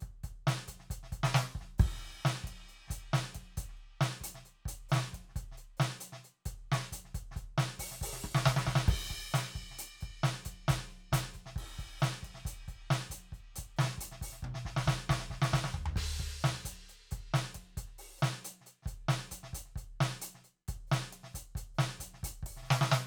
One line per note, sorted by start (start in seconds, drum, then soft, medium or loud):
0.01 closed hi-hat soft
0.01 kick medium
0.24 closed hi-hat medium
0.24 kick medium
0.48 snare loud
0.68 closed hi-hat medium
0.68 kick soft
0.80 snare soft
0.91 closed hi-hat medium
0.91 kick medium
1.04 snare soft
1.13 closed hi-hat medium
1.13 kick medium
1.24 snare loud
1.34 snare loud
1.34 hi-hat pedal soft
1.56 kick medium
1.61 snare soft
1.79 kick loud
1.79 hi-hat pedal medium
1.79 crash medium
1.95 snare soft
2.00 closed hi-hat soft
2.26 snare loud
2.44 kick medium
2.44 closed hi-hat medium
2.69 closed hi-hat soft
2.88 closed hi-hat loud
2.88 kick medium
2.88 snare soft
3.14 snare loud
3.35 kick soft
3.35 closed hi-hat medium
3.58 closed hi-hat medium
3.58 kick medium
3.69 snare soft
3.74 snare soft
3.74 closed hi-hat soft
4.01 snare loud
4.22 closed hi-hat loud
4.22 kick soft
4.35 snare soft
4.46 closed hi-hat soft
4.66 closed hi-hat loud
4.66 kick medium
4.90 snare loud
4.90 hi-hat pedal medium
4.96 snare medium
5.14 kick soft
5.14 closed hi-hat medium
5.30 snare soft
5.36 closed hi-hat medium
5.36 kick medium
5.52 snare soft
5.58 closed hi-hat soft
5.77 snare loud
5.77 hi-hat pedal soft
6.01 closed hi-hat loud
6.13 snare medium
6.25 closed hi-hat soft
6.46 closed hi-hat medium
6.46 kick medium
6.72 snare loud
6.93 closed hi-hat loud
6.93 kick soft
7.05 snare soft
7.11 closed hi-hat medium
7.11 kick medium
7.11 snare soft
7.32 snare soft
7.37 open hi-hat soft
7.37 kick medium
7.58 snare loud
7.80 open hi-hat loud
7.80 kick soft
7.92 snare soft
8.02 open hi-hat loud
8.02 kick medium
8.13 snare medium
8.24 kick soft
8.24 cross-stick medium
8.35 snare loud
8.46 kick soft
8.46 snare loud
8.57 snare loud
8.67 kick medium
8.67 snare loud
8.76 snare loud
8.89 kick loud
8.89 crash loud
9.09 open hi-hat medium
9.09 kick soft
9.09 snare soft
9.31 closed hi-hat loud
9.31 snare loud
9.31 hi-hat pedal medium
9.56 kick medium
9.56 closed hi-hat soft
9.71 snare soft
9.79 closed hi-hat loud
9.95 snare soft
10.01 closed hi-hat soft
10.01 kick medium
10.24 snare loud
10.46 closed hi-hat medium
10.46 kick soft
10.69 open hi-hat loud
10.69 kick medium
10.69 snare loud
11.13 closed hi-hat loud
11.13 kick medium
11.13 snare loud
11.34 closed hi-hat soft
11.34 kick soft
11.47 snare soft
11.56 kick medium
11.56 crash medium
11.79 closed hi-hat soft
11.79 kick medium
12.00 snare loud
12.00 hi-hat pedal medium
12.23 kick soft
12.23 closed hi-hat medium
12.35 snare soft
12.46 closed hi-hat medium
12.46 kick medium
12.57 snare soft
12.69 closed hi-hat soft
12.69 kick soft
12.91 snare loud
13.11 closed hi-hat loud
13.11 kick soft
13.33 closed hi-hat soft
13.33 kick soft
13.55 closed hi-hat loud
13.55 kick soft
13.55 snare soft
13.77 snare loud
13.77 hi-hat pedal soft
13.84 snare medium
13.98 closed hi-hat loud
13.98 kick soft
14.12 snare soft
14.22 open hi-hat loud
14.22 kick medium
14.33 snare soft
14.43 kick medium
14.43 high tom loud
14.55 snare medium
14.66 kick medium
14.66 snare medium
14.77 snare loud
14.87 kick medium
14.87 snare loud
15.10 kick medium
15.10 snare loud
15.20 snare soft
15.31 kick soft
15.31 snare medium
15.42 snare loud
15.53 kick medium
15.53 snare loud
15.53 hi-hat pedal soft
15.65 snare medium
15.75 kick medium
15.75 floor tom medium
15.86 floor tom loud
15.96 kick medium
15.96 crash loud
16.19 open hi-hat soft
16.19 kick medium
16.41 snare loud
16.41 hi-hat pedal soft
16.66 closed hi-hat loud
16.66 kick soft
16.85 snare soft
16.90 closed hi-hat medium
17.12 closed hi-hat medium
17.12 kick medium
17.34 snare loud
17.55 kick soft
17.55 closed hi-hat medium
17.78 closed hi-hat medium
17.78 kick medium
17.87 snare soft
17.99 open hi-hat medium
18.19 hi-hat pedal medium
18.23 snare loud
18.45 closed hi-hat loud
18.62 snare soft
18.67 closed hi-hat medium
18.83 kick medium
18.83 snare soft
18.88 closed hi-hat medium
19.09 snare loud
19.32 closed hi-hat loud
19.32 kick soft
19.44 snare soft
19.54 closed hi-hat loud
19.54 kick soft
19.66 snare soft
19.76 closed hi-hat medium
19.76 kick medium
20.01 snare loud
20.06 snare medium
20.19 closed hi-hat loud
20.19 hi-hat pedal soft
20.35 snare soft
20.45 closed hi-hat soft
20.69 closed hi-hat medium
20.69 kick medium
20.88 hi-hat pedal soft
20.92 snare loud
21.09 closed hi-hat medium
21.09 hi-hat pedal soft
21.24 snare soft
21.31 kick soft
21.31 hi-hat pedal soft
21.36 closed hi-hat loud
21.56 closed hi-hat medium
21.56 kick medium
21.75 hi-hat pedal soft
21.79 snare loud
22.00 closed hi-hat loud
22.00 kick soft
22.14 snare soft
22.24 closed hi-hat loud
22.24 kick medium
22.43 kick medium
22.43 open hi-hat medium
22.57 snare soft
22.63 snare soft
22.63 hi-hat pedal soft
22.67 snare soft
22.71 snare loud
22.82 snare loud
22.92 snare loud